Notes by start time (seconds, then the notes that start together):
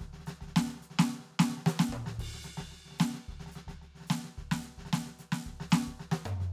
0.01 kick, snare
0.08 kick
0.14 snare
0.20 snare
0.26 snare, hi-hat pedal
0.28 snare
0.42 kick, snare
0.48 snare
0.57 snare
0.69 snare
0.75 snare
0.82 snare, hi-hat pedal
0.91 snare
0.95 snare
0.99 snare
1.15 snare
1.21 snare
1.26 snare
1.32 snare
1.40 snare, hi-hat pedal
1.52 snare
1.58 snare
1.67 snare, hi-hat pedal
1.80 snare
1.90 kick, mid tom
1.96 kick
2.07 snare
2.20 kick, crash
2.34 kick, snare
2.44 snare, hi-hat pedal
2.59 kick, snare
2.72 snare
2.78 snare
2.83 snare
2.86 snare
2.92 snare
2.97 snare, hi-hat pedal
3.01 snare
3.15 snare
3.30 kick, snare
3.36 kick
3.41 snare
3.47 snare
3.53 snare, hi-hat pedal
3.69 kick, snare
3.83 snare
3.90 snare
3.94 snare
4.02 snare
4.07 snare, hi-hat pedal
4.11 snare
4.25 snare
4.39 kick, snare
4.45 kick
4.53 snare
4.62 snare, hi-hat pedal
4.71 snare
4.77 kick, snare
4.79 snare
4.86 snare
4.94 snare
5.07 snare
5.20 snare, hi-hat pedal
5.33 snare
5.47 kick, snare
5.53 kick
5.61 snare
5.71 snare, hi-hat pedal
5.88 kick, snare
6.01 snare
6.13 snare
6.26 floor tom, hi-hat pedal
6.41 snare